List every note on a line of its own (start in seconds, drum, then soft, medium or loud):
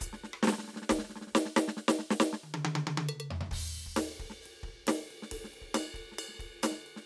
0.01 kick medium
0.01 hi-hat pedal loud
0.01 ride bell medium
0.08 kick soft
0.13 snare soft
0.24 snare soft
0.34 cross-stick medium
0.43 snare loud
0.48 snare loud
0.53 snare medium
0.59 snare medium
0.64 snare soft
0.68 snare soft
0.74 snare soft
0.77 snare medium
0.82 snare soft
0.90 kick soft
0.90 snare loud
0.99 snare medium
1.04 snare soft
1.10 snare soft
1.16 snare soft
1.22 snare soft
1.27 snare soft
1.32 kick soft
1.32 snare soft
1.35 snare loud
1.46 snare soft
1.57 snare loud
1.68 snare medium
1.77 snare medium
1.89 snare loud
1.99 snare soft
2.11 snare loud
2.20 snare loud
2.33 snare medium
2.44 high tom medium
2.54 high tom loud
2.65 high tom loud
2.76 high tom loud
2.87 high tom loud
2.98 high tom loud
3.09 percussion loud
3.20 percussion medium
3.31 floor tom loud
3.41 floor tom loud
3.51 kick medium
3.51 hi-hat pedal soft
3.51 crash loud
3.51 floor tom soft
3.65 kick soft
3.86 kick soft
3.91 kick soft
3.97 snare loud
3.97 hi-hat pedal medium
3.97 ride loud
4.20 kick soft
4.20 ride soft
4.26 kick soft
4.30 snare soft
4.42 hi-hat pedal soft
4.42 ride medium
4.64 kick soft
4.70 kick soft
4.87 snare loud
4.87 hi-hat pedal soft
4.87 ride loud
5.11 ride soft
5.23 snare soft
5.32 kick soft
5.32 hi-hat pedal soft
5.32 ride loud
5.45 snare soft
5.54 ride soft
5.62 kick soft
5.75 snare medium
5.75 hi-hat pedal soft
5.75 ride bell loud
5.94 kick soft
5.94 ride medium
6.00 kick soft
6.12 snare soft
6.19 hi-hat pedal medium
6.19 ride bell loud
6.29 snare soft
6.35 snare soft
6.40 kick soft
6.40 ride medium
6.45 kick soft
6.63 snare loud
6.63 hi-hat pedal loud
6.63 ride bell loud
6.72 snare soft
6.87 ride soft
6.97 snare soft